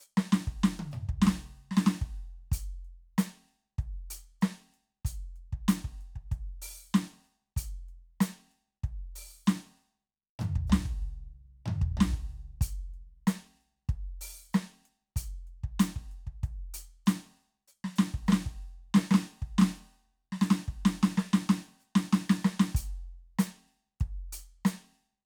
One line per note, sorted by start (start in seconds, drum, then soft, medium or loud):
0.01 hi-hat pedal medium
0.18 snare loud
0.30 snare loud
0.30 hi-hat pedal soft
0.48 kick medium
0.59 hi-hat pedal soft
0.64 snare loud
0.80 high tom loud
0.92 hi-hat pedal soft
0.92 mid tom medium
1.09 kick medium
1.23 snare loud
1.28 snare loud
1.72 snare medium
1.78 snare loud
1.87 snare loud
2.02 kick medium
2.52 closed hi-hat loud
2.52 kick medium
2.85 closed hi-hat soft
3.19 closed hi-hat loud
3.19 snare loud
3.49 closed hi-hat soft
3.79 kick medium
3.79 closed hi-hat soft
4.11 open hi-hat loud
4.42 snare loud
4.42 closed hi-hat medium
4.42 hi-hat pedal medium
4.75 closed hi-hat soft
5.06 closed hi-hat loud
5.06 kick medium
5.37 closed hi-hat soft
5.53 kick medium
5.69 closed hi-hat loud
5.69 snare loud
5.85 kick medium
6.02 closed hi-hat soft
6.16 kick soft
6.32 kick medium
6.32 closed hi-hat soft
6.63 open hi-hat loud
6.95 snare loud
6.95 hi-hat pedal medium
7.26 closed hi-hat soft
7.57 closed hi-hat loud
7.57 kick medium
7.89 closed hi-hat soft
8.21 closed hi-hat loud
8.21 snare loud
8.52 closed hi-hat soft
8.84 kick medium
8.84 closed hi-hat soft
9.16 open hi-hat loud
9.47 closed hi-hat medium
9.47 snare loud
9.47 hi-hat pedal soft
10.40 hi-hat pedal medium
10.40 mid tom loud
10.40 high tom loud
10.56 kick medium
10.68 floor tom loud
10.68 hi-hat pedal soft
10.73 snare loud
10.86 kick medium
11.66 mid tom loud
11.66 high tom loud
11.82 kick medium
11.98 snare loud
11.98 floor tom loud
12.14 kick medium
12.62 closed hi-hat loud
12.62 kick medium
12.94 closed hi-hat soft
13.28 closed hi-hat loud
13.28 snare loud
13.62 closed hi-hat soft
13.90 kick medium
13.90 closed hi-hat soft
14.22 open hi-hat loud
14.54 snare loud
14.54 closed hi-hat medium
14.54 hi-hat pedal medium
14.86 closed hi-hat soft
15.17 closed hi-hat loud
15.17 kick medium
15.48 closed hi-hat soft
15.64 kick medium
15.80 closed hi-hat loud
15.80 snare loud
15.97 kick medium
16.12 closed hi-hat soft
16.28 kick soft
16.44 kick medium
16.44 closed hi-hat soft
16.75 open hi-hat loud
17.07 closed hi-hat loud
17.07 snare loud
17.07 hi-hat pedal medium
17.68 hi-hat pedal soft
17.85 snare medium
17.97 snare loud
17.97 hi-hat pedal medium
18.15 kick medium
18.27 snare loud
18.27 hi-hat pedal soft
18.33 snare loud
18.47 kick medium
18.95 snare loud
18.97 snare loud
19.12 snare loud
19.15 snare loud
19.43 kick medium
19.59 snare loud
19.62 snare loud
20.33 snare medium
20.42 snare loud
20.51 snare loud
20.69 kick medium
20.86 snare loud
21.04 snare loud
21.14 hi-hat pedal soft
21.18 snare loud
21.34 snare loud
21.49 snare loud
21.49 hi-hat pedal soft
21.81 hi-hat pedal soft
21.96 snare loud
22.13 snare loud
22.30 snare loud
22.45 snare loud
22.60 snare loud
22.75 closed hi-hat loud
22.75 kick medium
23.39 closed hi-hat loud
23.39 snare loud
23.71 closed hi-hat soft
24.01 kick medium
24.01 closed hi-hat soft
24.33 open hi-hat loud
24.66 closed hi-hat loud
24.66 snare loud
24.66 hi-hat pedal medium
24.97 closed hi-hat soft